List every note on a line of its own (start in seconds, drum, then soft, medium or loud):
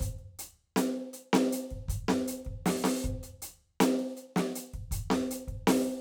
0.01 closed hi-hat loud
0.01 kick medium
0.01 hi-hat pedal medium
0.19 closed hi-hat soft
0.39 closed hi-hat loud
0.77 closed hi-hat loud
0.77 snare loud
1.14 closed hi-hat medium
1.34 snare loud
1.53 closed hi-hat loud
1.71 kick soft
1.71 closed hi-hat soft
1.89 closed hi-hat loud
1.89 kick medium
2.09 snare loud
2.28 closed hi-hat loud
2.45 kick soft
2.45 closed hi-hat soft
2.66 open hi-hat loud
2.66 snare loud
2.85 open hi-hat loud
2.85 snare loud
3.05 kick medium
3.05 hi-hat pedal medium
3.23 closed hi-hat medium
3.43 closed hi-hat loud
3.81 closed hi-hat loud
3.81 snare loud
4.00 closed hi-hat soft
4.16 closed hi-hat medium
4.16 hi-hat pedal soft
4.37 snare loud
4.56 closed hi-hat loud
4.74 kick soft
4.74 closed hi-hat soft
4.92 closed hi-hat loud
4.92 kick medium
5.11 snare loud
5.31 closed hi-hat loud
5.48 kick soft
5.48 closed hi-hat soft
5.68 open hi-hat loud
5.68 snare loud